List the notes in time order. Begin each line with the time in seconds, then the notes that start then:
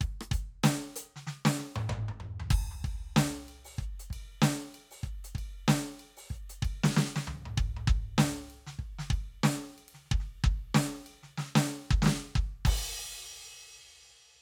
0.01 kick, closed hi-hat
0.21 cross-stick
0.32 closed hi-hat, kick
0.64 closed hi-hat, snare
0.96 closed hi-hat
1.16 snare
1.27 snare
1.45 snare
1.59 snare, hi-hat pedal
1.76 high tom
1.89 kick, high tom
2.09 high tom
2.20 mid tom
2.40 floor tom
2.51 kick, crash
2.71 floor tom
2.84 kick, ride bell
3.16 snare, hi-hat pedal
3.49 ride bell
3.65 open hi-hat
3.79 kick
4.00 closed hi-hat
4.11 kick, ride bell
4.42 snare
4.75 ride bell
4.91 open hi-hat
5.03 kick
5.24 closed hi-hat
5.35 kick, ride bell
5.68 snare
6.00 ride bell
6.17 open hi-hat
6.31 kick
6.35 hi-hat pedal
6.50 closed hi-hat
6.63 kick, ride bell
6.84 snare
6.97 snare
7.16 snare, hi-hat pedal
7.28 floor tom
7.46 high tom
7.58 kick, ride bell
7.77 high tom
7.88 kick, ride bell
8.18 snare
8.50 ride
8.67 snare
8.79 kick
8.99 snare
9.10 kick, ride bell
9.44 snare, hi-hat pedal
9.78 ride bell
9.88 ride
9.94 snare
10.06 snare
10.12 kick
10.20 snare
10.44 kick, ride bell
10.75 snare, hi-hat pedal
11.06 ride bell
11.23 snare
11.37 snare, hi-hat pedal
11.56 snare
11.68 snare
11.91 kick
12.02 snare
12.06 snare
12.36 kick
12.65 open hi-hat, kick, crash
12.75 hi-hat pedal